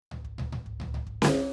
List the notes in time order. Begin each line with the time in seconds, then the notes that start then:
0.11 floor tom, high tom
0.24 kick
0.38 floor tom, high tom
0.52 floor tom, high tom
0.66 kick
0.80 floor tom, high tom
0.94 floor tom, high tom
1.07 kick
1.22 snare
1.25 snare